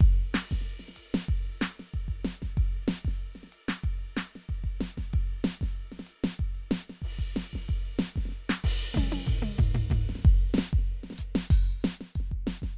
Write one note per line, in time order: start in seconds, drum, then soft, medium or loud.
0.01 kick loud
0.01 crash loud
0.34 snare loud
0.34 hi-hat pedal medium
0.34 ride medium
0.52 kick medium
0.52 snare soft
0.62 snare soft
0.62 hi-hat pedal soft
0.80 snare soft
0.89 snare soft
0.96 kick soft
0.96 hi-hat pedal medium
0.96 ride loud
1.15 snare loud
1.29 kick medium
1.29 ride medium
1.46 ride soft
1.61 snare loud
1.61 hi-hat pedal medium
1.61 ride loud
1.80 snare soft
1.94 kick medium
1.94 ride medium
2.09 kick medium
2.09 ride soft
2.25 snare loud
2.25 hi-hat pedal medium
2.25 ride medium
2.43 kick soft
2.43 snare soft
2.58 kick medium
2.58 ride loud
2.88 snare loud
2.88 hi-hat pedal medium
2.88 ride loud
3.05 kick medium
3.05 snare soft
3.22 ride soft
3.36 snare soft
3.44 snare soft
3.48 snare soft
3.48 hi-hat pedal medium
3.53 ride loud
3.69 snare loud
3.84 kick medium
3.84 ride loud
3.99 ride soft
4.16 snare loud
4.16 hi-hat pedal medium
4.16 ride loud
4.36 snare soft
4.50 kick medium
4.50 ride medium
4.64 kick medium
4.64 ride soft
4.81 snare medium
4.81 hi-hat pedal medium
4.81 ride medium
4.98 kick soft
4.98 snare soft
5.14 kick medium
5.14 ride loud
5.45 snare loud
5.45 hi-hat pedal medium
5.45 ride medium
5.62 kick medium
5.62 snare soft
5.71 snare soft
5.76 ride medium
5.92 snare soft
6.00 snare medium
6.07 hi-hat pedal medium
6.07 ride loud
6.24 snare loud
6.40 kick medium
6.40 ride medium
6.55 ride soft
6.71 snare loud
6.71 hi-hat pedal medium
6.71 ride loud
6.90 snare soft
7.03 kick soft
7.03 ride medium
7.19 kick medium
7.19 ride medium
7.36 snare loud
7.36 hi-hat pedal medium
7.36 ride medium
7.54 kick soft
7.54 snare soft
7.69 kick medium
7.69 ride loud
7.99 kick soft
7.99 snare loud
7.99 hi-hat pedal medium
7.99 ride medium
8.16 kick medium
8.16 snare soft
8.26 snare soft
8.29 snare soft
8.29 hi-hat pedal medium
8.29 ride medium
8.32 snare soft
8.50 snare loud
8.64 kick medium
8.64 hi-hat pedal soft
8.64 ride loud
8.95 kick medium
8.95 mid tom loud
8.95 high tom loud
9.13 high tom loud
9.27 kick medium
9.27 floor tom medium
9.27 hi-hat pedal soft
9.43 mid tom loud
9.59 kick medium
9.59 floor tom loud
9.75 floor tom loud
9.91 kick medium
9.91 floor tom loud
10.10 snare medium
10.16 snare soft
10.19 kick soft
10.19 snare soft
10.24 kick loud
10.24 hi-hat pedal medium
10.24 crash loud
10.55 snare loud
10.55 hi-hat pedal medium
10.59 snare loud
10.74 kick medium
10.79 snare soft
10.88 closed hi-hat soft
11.04 snare soft
11.11 snare medium
11.13 snare soft
11.18 closed hi-hat loud
11.18 kick soft
11.36 snare loud
11.51 open hi-hat loud
11.51 kick loud
11.84 closed hi-hat loud
11.84 snare loud
11.84 hi-hat pedal soft
12.01 snare medium
12.16 closed hi-hat medium
12.16 kick medium
12.21 snare soft
12.32 kick medium
12.32 closed hi-hat soft
12.47 closed hi-hat loud
12.47 snare loud
12.63 kick medium
12.63 snare soft